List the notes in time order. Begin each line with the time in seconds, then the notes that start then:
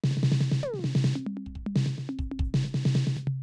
0.04 snare
0.11 snare
0.17 snare
0.23 snare
0.32 snare
0.41 snare
0.52 snare
0.63 high tom
0.74 snare
0.79 snare
0.84 snare
0.95 snare
1.04 snare
1.16 high tom
1.27 mid tom
1.37 high tom
1.46 kick
1.55 kick
1.66 mid tom
1.76 snare
1.86 snare
1.98 snare
2.03 hi-hat pedal
2.09 high tom
2.19 kick, hi-hat pedal
2.32 high tom
2.39 kick
2.44 hi-hat pedal
2.54 snare
2.74 snare
2.85 snare
2.95 snare
3.07 snare
3.16 floor tom, hi-hat pedal
3.27 floor tom